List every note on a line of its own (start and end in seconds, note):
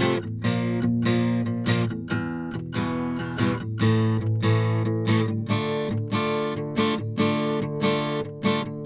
0.00 0.21 F2
0.00 0.16 C3
0.00 0.25 F3
0.00 0.25 A3
0.04 0.29 C4
0.16 0.30 A#2
0.25 0.82 E2
0.46 0.85 A#2
0.46 0.83 F3
0.46 0.85 A#3
0.83 1.04 E2
0.83 1.05 A#2
0.83 1.06 F3
1.04 1.66 E2
1.04 1.46 A#2
1.04 1.46 F3
1.04 1.68 A#3
1.48 1.69 A#2
1.48 1.68 F3
1.68 1.91 E2
1.68 1.84 A#2
1.68 1.90 F3
1.68 1.90 A#3
1.72 1.88 D4
1.84 1.91 A#2
1.92 2.10 E2
2.12 2.55 E2
2.54 2.74 E2
2.54 2.76 B2
2.75 3.21 E2
2.75 3.22 B2
2.75 3.24 E3
2.80 3.23 B3
3.21 3.40 E2
3.21 3.41 B2
3.40 3.61 E2
3.40 3.54 B2
3.40 3.59 E3
3.40 3.61 G3
3.40 3.62 B3
3.54 3.82 A2
3.62 3.81 F2
3.81 4.81 E2
3.81 4.22 A2
3.81 4.20 E3
3.85 4.22 A3
4.21 4.43 A2
4.21 4.45 E3
4.44 4.85 A2
4.44 4.86 E3
4.44 5.09 A3
4.87 5.07 A2
4.87 5.10 E3
5.09 5.28 A2
5.09 5.27 E3
5.09 5.21 A3
5.21 5.27 G#3
5.30 5.45 A2
5.30 5.49 D3
5.50 5.92 D3
5.50 5.92 A3
5.50 5.94 D4
5.50 5.93 F4
5.92 6.06 A2
5.92 6.12 D3
5.92 6.12 A3
6.13 6.58 D3
6.13 6.57 A3
6.13 6.58 D4
6.13 6.58 F4
6.58 6.78 D3
6.58 6.79 A3
6.78 6.99 D3
6.78 6.99 A3
6.78 7.00 D4
6.78 7.00 F4
7.00 7.12 A2
7.00 7.19 D3
7.19 7.63 D3
7.19 7.62 A3
7.19 7.66 D4
7.19 7.63 F4
7.62 7.83 D3
7.62 7.83 A3
7.83 8.25 D3
7.83 8.23 A3
7.83 8.25 D4
7.83 8.25 F4
8.23 8.45 D3
8.23 8.30 A3
8.45 8.66 D3
8.45 8.62 A3
8.45 8.66 D4
8.45 8.67 F4
8.63 8.86 A3
8.67 8.86 D3